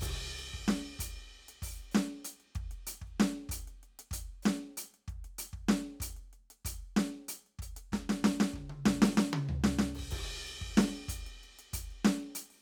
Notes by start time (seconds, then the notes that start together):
0.01 kick, hi-hat pedal, ride
0.39 closed hi-hat
0.53 kick
0.68 snare
0.99 closed hi-hat, kick
1.16 closed hi-hat
1.35 closed hi-hat
1.48 closed hi-hat
1.62 open hi-hat, kick
1.91 snare, hi-hat pedal
2.24 closed hi-hat
2.40 closed hi-hat
2.55 kick, closed hi-hat
2.71 closed hi-hat
2.87 closed hi-hat
3.01 kick
3.07 closed hi-hat
3.20 snare
3.49 closed hi-hat, kick
3.67 closed hi-hat
3.83 closed hi-hat
3.99 closed hi-hat
4.11 closed hi-hat, kick
4.42 snare, hi-hat pedal
4.77 closed hi-hat
4.94 closed hi-hat
5.08 kick, closed hi-hat
5.24 closed hi-hat
5.38 closed hi-hat
5.53 kick
5.69 snare
6.00 closed hi-hat, kick
6.16 closed hi-hat
6.33 closed hi-hat
6.50 closed hi-hat
6.65 closed hi-hat, kick
6.96 snare
7.28 closed hi-hat
7.46 closed hi-hat
7.59 closed hi-hat, kick
7.76 closed hi-hat
7.92 kick, snare
8.09 snare
8.23 kick, snare
8.40 snare
8.53 kick, high tom
8.69 high tom
8.86 kick, snare
9.02 snare
9.17 snare
9.33 high tom
9.49 floor tom
9.64 snare
9.79 snare
9.95 crash
9.99 kick
10.11 kick, ride
10.47 closed hi-hat
10.61 kick
10.77 snare
10.93 closed hi-hat
11.08 closed hi-hat, kick
11.26 closed hi-hat
11.43 closed hi-hat
11.59 closed hi-hat
11.73 closed hi-hat, kick
11.90 closed hi-hat
12.05 snare
12.20 closed hi-hat
12.35 closed hi-hat
12.50 open hi-hat